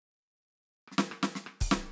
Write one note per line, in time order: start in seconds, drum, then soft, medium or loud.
0.88 cross-stick soft
0.88 snare soft
0.98 snare loud
1.11 cross-stick medium
1.23 snare loud
1.35 snare medium
1.46 cross-stick medium
1.61 open hi-hat loud
1.61 kick medium
1.71 snare loud
1.71 hi-hat pedal medium